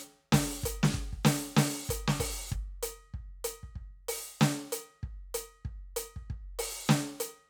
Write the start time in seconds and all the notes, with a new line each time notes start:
0.01 hi-hat pedal
0.32 open hi-hat, kick, snare
0.62 closed hi-hat, kick, hi-hat pedal
0.83 snare
0.94 kick
1.13 kick
1.22 kick, snare, hi-hat pedal
1.26 open hi-hat
1.57 open hi-hat, snare
1.87 closed hi-hat, kick, hi-hat pedal
2.08 snare
2.20 open hi-hat, kick
2.50 kick, hi-hat pedal
2.83 closed hi-hat
3.14 kick
3.44 closed hi-hat
3.63 kick
3.76 kick
4.09 open hi-hat
4.40 snare, hi-hat pedal
4.72 closed hi-hat
5.03 kick
5.34 closed hi-hat
5.65 kick
5.96 closed hi-hat
6.16 kick
6.30 kick
6.59 open hi-hat
6.88 snare, hi-hat pedal
7.20 closed hi-hat